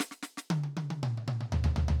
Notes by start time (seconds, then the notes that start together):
0.00 snare
0.11 snare
0.23 snare
0.37 snare
0.50 high tom
0.63 high tom
0.77 high tom
0.90 high tom
1.03 mid tom
1.17 mid tom
1.28 mid tom
1.41 mid tom
1.52 floor tom
1.64 floor tom
1.76 floor tom
1.88 floor tom